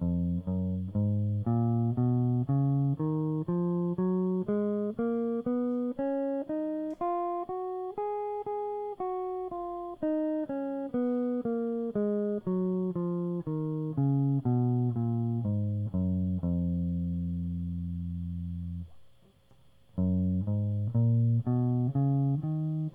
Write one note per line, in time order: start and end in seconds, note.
0.05 0.44 F2
0.51 0.94 F#2
0.97 1.47 G#2
1.48 1.96 A#2
1.99 2.47 B2
2.51 2.98 C#3
3.01 3.47 D#3
3.50 3.98 F3
4.00 4.45 F#3
4.49 4.93 G#3
5.00 5.44 A#3
5.47 5.95 B3
6.00 6.46 C#4
6.50 6.96 D#4
7.02 7.46 F4
7.50 7.97 F#4
7.99 8.44 G#4
8.47 8.97 G#4
9.01 9.53 F#4
9.53 9.98 F4
10.03 10.48 D#4
10.51 10.91 C#4
10.95 11.45 B3
11.46 11.94 A#3
11.97 12.42 G#3
12.48 12.94 F#3
12.97 13.44 F3
13.48 13.96 D#3
13.99 14.42 C#3
14.47 14.94 B2
14.97 15.45 A#2
15.47 15.92 G#2
15.97 16.42 F#2
16.46 18.89 F2
20.01 20.46 F#2
20.50 20.92 G#2
20.97 21.43 A#2
21.48 21.93 B2
21.97 22.42 C#3
22.48 22.90 D#3